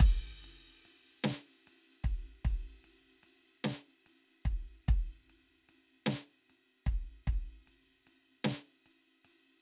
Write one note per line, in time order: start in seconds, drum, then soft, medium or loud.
0.01 kick loud
0.01 ride medium
0.01 crash medium
0.45 ride medium
0.86 ride medium
1.25 snare loud
1.25 ride medium
1.68 ride medium
2.04 kick medium
2.04 ride soft
2.46 kick medium
2.46 ride medium
2.85 ride soft
3.24 ride medium
3.65 snare loud
3.65 ride medium
4.07 ride soft
4.46 kick medium
4.46 ride soft
4.89 kick medium
4.89 ride medium
5.30 ride soft
5.70 ride soft
6.07 snare loud
6.07 ride soft
6.50 ride soft
6.87 kick medium
6.87 ride soft
7.28 kick medium
7.28 ride soft
7.68 ride soft
8.08 ride soft
8.45 snare loud
8.45 ride soft
8.87 ride soft
9.26 ride medium